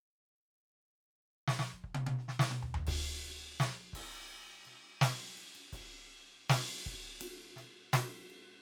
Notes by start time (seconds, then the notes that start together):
1.48 snare
1.59 snare
1.73 kick
1.84 kick
1.95 high tom
2.06 high tom
2.18 snare
2.39 snare
2.51 high tom
2.62 floor tom
2.74 floor tom
2.87 kick, ride
3.59 snare, hi-hat pedal
3.93 kick, crash
4.28 hi-hat pedal
4.65 snare, ride
5.01 snare, hi-hat pedal, ride
5.37 ride
5.55 ride
5.72 kick, hi-hat pedal, ride
6.15 ride
6.49 snare, hi-hat pedal, ride
6.86 kick, ride
7.20 hi-hat pedal, ride
7.56 snare, ride
7.93 snare, hi-hat pedal, ride
8.30 ride